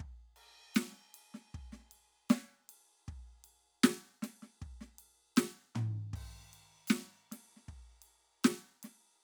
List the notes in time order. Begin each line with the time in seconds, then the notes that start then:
0.01 kick
0.37 ride
0.76 snare, percussion
0.92 snare
1.15 ride
1.35 snare
1.55 kick
1.73 snare
1.80 snare
1.92 ride
2.30 snare, percussion
2.70 ride
3.09 kick
3.45 ride
3.84 snare, percussion
4.23 snare, ride
4.43 snare
4.62 kick
4.82 snare
4.99 ride
5.37 snare, percussion
5.76 snare, floor tom
6.14 kick, crash
6.54 ride
6.88 snare, percussion
6.99 snare
7.32 snare, ride
7.57 snare
7.69 kick
8.03 ride
8.45 snare, percussion
8.84 snare, ride